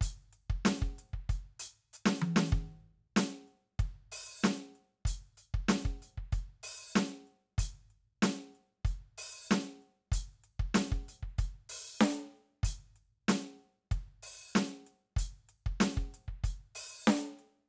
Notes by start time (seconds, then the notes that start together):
0.01 closed hi-hat, kick
0.33 closed hi-hat
0.50 kick
0.65 closed hi-hat, snare
0.82 kick
0.99 closed hi-hat
1.13 kick
1.29 closed hi-hat, kick
1.60 open hi-hat
1.93 hi-hat pedal
2.06 snare
2.22 high tom
2.36 snare
2.52 kick
3.16 closed hi-hat, snare
3.48 closed hi-hat
3.79 kick, closed hi-hat
4.12 open hi-hat
4.42 closed hi-hat, snare, hi-hat pedal
4.75 closed hi-hat
5.05 closed hi-hat, kick
5.37 closed hi-hat
5.54 kick
5.69 closed hi-hat, snare
5.85 kick
6.02 closed hi-hat
6.18 kick
6.33 closed hi-hat, kick
6.63 open hi-hat
6.96 closed hi-hat, snare, hi-hat pedal
7.27 closed hi-hat
7.58 closed hi-hat, kick
7.90 closed hi-hat
8.23 closed hi-hat, snare
8.55 closed hi-hat
8.85 closed hi-hat, kick
9.18 open hi-hat
9.51 snare, hi-hat pedal, open hi-hat
9.82 closed hi-hat
10.12 closed hi-hat, kick
10.44 closed hi-hat
10.60 kick
10.75 closed hi-hat, snare
10.92 kick
11.08 closed hi-hat
11.23 kick
11.38 closed hi-hat, kick
11.69 open hi-hat
12.01 snare, hi-hat pedal
12.63 closed hi-hat, kick
12.96 closed hi-hat
13.28 closed hi-hat, snare
13.91 kick, closed hi-hat
14.23 open hi-hat
14.55 closed hi-hat, snare, hi-hat pedal
14.87 closed hi-hat
15.17 closed hi-hat, kick
15.49 closed hi-hat
15.66 kick
15.80 closed hi-hat, snare
15.97 kick
16.14 closed hi-hat
16.28 kick
16.44 closed hi-hat, kick
16.75 open hi-hat
17.07 snare, hi-hat pedal
17.39 closed hi-hat